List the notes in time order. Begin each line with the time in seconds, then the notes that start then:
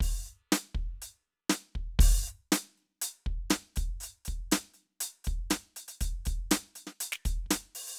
0.01 open hi-hat, kick
0.26 hi-hat pedal
0.53 closed hi-hat, snare
0.75 kick
1.02 closed hi-hat
1.50 closed hi-hat, snare
1.76 kick
2.00 open hi-hat, kick
2.27 hi-hat pedal
2.52 closed hi-hat, snare
2.78 closed hi-hat
3.02 closed hi-hat
3.27 kick
3.51 closed hi-hat, snare
3.76 closed hi-hat, kick
4.01 closed hi-hat, hi-hat pedal
4.26 closed hi-hat, kick
4.52 closed hi-hat, snare
4.74 open hi-hat
5.01 closed hi-hat
5.25 closed hi-hat, kick
5.51 closed hi-hat, snare
5.77 closed hi-hat
5.89 closed hi-hat
6.01 closed hi-hat, kick
6.26 closed hi-hat, kick
6.51 closed hi-hat, snare
6.76 closed hi-hat
6.87 snare
7.01 closed hi-hat
7.13 snare
7.26 closed hi-hat, kick
7.47 kick
7.51 closed hi-hat, snare
7.76 open hi-hat
7.88 open hi-hat